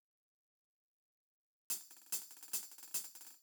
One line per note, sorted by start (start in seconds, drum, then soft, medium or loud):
1.70 percussion loud
1.81 percussion soft
1.91 percussion soft
1.97 percussion soft
2.02 percussion soft
2.06 percussion soft
2.10 percussion soft
2.12 percussion loud
2.22 percussion medium
2.31 percussion medium
2.37 percussion soft
2.41 percussion soft
2.43 percussion medium
2.48 percussion soft
2.52 percussion soft
2.53 percussion loud
2.63 percussion medium
2.71 percussion medium
2.78 percussion medium
2.83 percussion medium
2.88 percussion soft
2.91 percussion soft
2.94 percussion loud
3.04 percussion medium
3.15 percussion medium
3.21 percussion medium
3.25 percussion soft
3.27 percussion medium
3.31 percussion soft
3.34 percussion soft